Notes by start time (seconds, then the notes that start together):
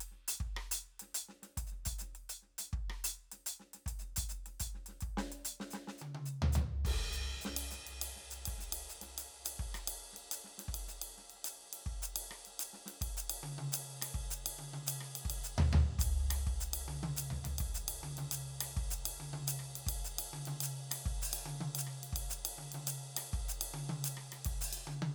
0.01 closed hi-hat
0.12 snare
0.28 closed hi-hat
0.41 kick
0.57 cross-stick
0.72 closed hi-hat
1.00 snare, closed hi-hat
1.15 closed hi-hat
1.29 snare
1.43 snare, closed hi-hat
1.57 kick, open hi-hat
1.67 hi-hat pedal
1.72 snare
1.86 open hi-hat, kick
1.99 snare, hi-hat pedal
2.15 closed hi-hat
2.30 closed hi-hat
2.43 snare
2.59 closed hi-hat, snare
2.73 kick
2.90 cross-stick
3.05 closed hi-hat
3.32 snare, closed hi-hat
3.47 closed hi-hat
3.60 snare
3.74 snare, closed hi-hat
3.86 kick, open hi-hat
3.99 snare, hi-hat pedal
4.17 open hi-hat, kick
4.29 snare, hi-hat pedal
4.46 snare, closed hi-hat
4.60 closed hi-hat, kick
4.75 snare
4.87 snare, closed hi-hat
5.01 kick, closed hi-hat
5.18 snare
5.32 closed hi-hat
5.45 closed hi-hat
5.60 snare
5.71 snare, hi-hat pedal
5.88 snare
5.99 hi-hat pedal, high tom
6.15 high tom
6.26 hi-hat pedal
6.42 floor tom
6.53 floor tom, hi-hat pedal
6.85 kick, crash, ride
7.13 hi-hat pedal
7.42 snare, hi-hat pedal
7.57 ride
7.71 snare, hi-hat pedal
7.85 snare, ride
8.02 hi-hat pedal, ride
8.16 snare
8.31 hi-hat pedal, ride
8.46 kick, ride
8.58 snare, hi-hat pedal
8.73 ride
8.90 hi-hat pedal
9.02 snare, ride
9.18 hi-hat pedal, ride
9.45 hi-hat pedal, ride
9.60 kick
9.75 cross-stick, hi-hat pedal
9.88 ride
10.13 snare, ride
10.32 hi-hat pedal, ride
10.45 snare
10.58 snare, ride
10.69 kick
10.75 ride
10.87 snare, hi-hat pedal
11.02 ride
11.18 snare
11.30 snare, ride
11.45 hi-hat pedal, ride
11.73 ride
11.86 kick
12.03 hi-hat pedal
12.16 ride
12.31 cross-stick
12.46 snare, ride
12.60 hi-hat pedal, ride
12.74 snare
12.86 snare, ride
13.02 kick, ride
13.17 hi-hat pedal
13.30 ride
13.44 high tom
13.59 high tom
13.73 hi-hat pedal, ride
14.02 cross-stick, ride
14.15 kick
14.31 hi-hat pedal
14.46 ride
14.59 high tom
14.74 high tom
14.87 hi-hat pedal, ride
15.01 cross-stick
15.16 ride
15.25 kick
15.30 ride
15.44 hi-hat pedal
15.58 floor tom
15.73 floor tom
15.99 kick, hi-hat pedal, ride
16.31 cross-stick, ride
16.47 kick
16.61 hi-hat pedal
16.74 ride
16.88 high tom
17.04 high tom
17.17 hi-hat pedal, ride
17.31 floor tom
17.45 floor tom, ride
17.59 kick, ride
17.75 hi-hat pedal
17.89 ride
18.04 high tom
18.17 high tom, ride
18.32 hi-hat pedal, ride
18.61 cross-stick, ride
18.77 kick
18.91 hi-hat pedal
19.06 ride
19.20 high tom
19.34 high tom
19.48 hi-hat pedal, ride
19.60 cross-stick
19.76 ride
19.87 kick, ride
20.05 hi-hat pedal
20.19 ride
20.34 high tom
20.46 high tom, ride
20.61 hi-hat pedal, ride
20.92 cross-stick, ride
21.06 kick
21.23 hi-hat pedal
21.34 ride
21.46 high tom
21.61 high tom
21.75 hi-hat pedal, ride
21.87 cross-stick
22.04 ride
22.13 kick, ride
22.31 hi-hat pedal
22.46 ride
22.59 high tom
22.72 high tom, ride
22.87 hi-hat pedal, ride
23.17 cross-stick, ride
23.34 kick
23.49 hi-hat pedal
23.62 ride
23.74 high tom
23.90 high tom
24.05 hi-hat pedal, ride
24.17 cross-stick
24.32 cross-stick, ride
24.45 kick, ride
24.61 hi-hat pedal
24.73 ride bell
24.87 high tom
25.02 high tom